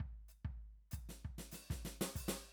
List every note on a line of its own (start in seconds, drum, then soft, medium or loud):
0.00 kick soft
0.28 hi-hat pedal soft
0.45 kick soft
0.91 kick soft
0.91 hi-hat pedal medium
1.09 snare soft
1.25 kick soft
1.38 snare soft
1.52 snare soft
1.52 hi-hat pedal medium
1.70 kick soft
1.70 snare soft
1.85 snare medium
2.01 snare medium
2.15 kick soft
2.15 hi-hat pedal medium
2.28 snare medium